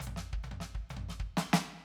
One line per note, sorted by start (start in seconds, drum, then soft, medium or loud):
0.03 floor tom medium
0.03 hi-hat pedal medium
0.08 high tom medium
0.16 snare medium
0.33 kick medium
0.43 floor tom medium
0.43 hi-hat pedal soft
0.51 high tom medium
0.60 snare medium
0.75 kick medium
0.89 floor tom medium
0.89 hi-hat pedal soft
0.97 high tom medium
1.09 snare medium
1.20 kick medium
1.37 snare medium
1.53 snare loud